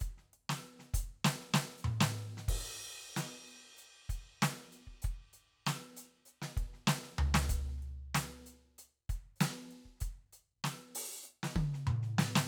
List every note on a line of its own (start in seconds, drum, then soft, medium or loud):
0.01 closed hi-hat soft
0.01 kick soft
0.10 kick soft
0.18 snare soft
0.34 closed hi-hat soft
0.50 snare medium
0.80 snare soft
0.95 closed hi-hat medium
0.95 kick medium
1.01 kick soft
1.04 kick soft
1.25 snare loud
1.42 snare soft
1.55 snare loud
1.70 snare soft
1.79 hi-hat pedal soft
1.85 mid tom loud
2.01 snare loud
2.38 snare soft
2.49 kick medium
2.49 snare soft
2.49 crash medium
2.56 kick soft
2.59 kick soft
2.82 snare soft
2.88 closed hi-hat soft
3.17 closed hi-hat medium
3.17 snare medium
3.48 closed hi-hat soft
3.69 snare soft
3.77 closed hi-hat soft
3.77 hi-hat pedal soft
4.10 closed hi-hat soft
4.10 kick soft
4.15 kick soft
4.43 open hi-hat medium
4.43 snare loud
4.43 hi-hat pedal soft
4.73 closed hi-hat soft
4.88 kick soft
5.03 open hi-hat medium
5.03 kick soft
5.03 hi-hat pedal soft
5.34 closed hi-hat soft
5.67 closed hi-hat soft
5.67 snare loud
5.97 open hi-hat medium
6.14 snare soft
6.26 closed hi-hat soft
6.26 hi-hat pedal soft
6.43 snare medium
6.58 kick soft
6.58 closed hi-hat soft
6.64 kick soft
6.66 kick soft
6.74 snare soft
6.88 snare loud
7.04 snare soft
7.19 floor tom loud
7.35 snare loud
7.43 snare soft
7.50 closed hi-hat medium
7.50 kick soft
7.56 kick soft
7.59 kick soft
7.70 snare soft
7.78 snare soft
7.82 snare soft
7.82 closed hi-hat soft
7.86 snare soft
8.15 open hi-hat medium
8.15 snare loud
8.27 snare soft
8.47 closed hi-hat soft
8.79 closed hi-hat soft
9.10 closed hi-hat soft
9.10 kick soft
9.16 kick soft
9.18 kick soft
9.37 hi-hat pedal soft
9.41 closed hi-hat medium
9.41 snare loud
9.52 snare soft
9.72 closed hi-hat soft
9.86 kick soft
9.98 closed hi-hat medium
9.98 snare soft
10.02 kick soft
10.14 snare soft
10.33 closed hi-hat soft
10.65 closed hi-hat medium
10.65 snare medium
10.96 open hi-hat loud
11.24 closed hi-hat soft
11.24 hi-hat pedal soft
11.44 snare medium
11.56 kick soft
11.56 high tom loud
11.74 snare soft
11.88 mid tom loud
12.03 snare soft
12.19 snare loud
12.36 snare loud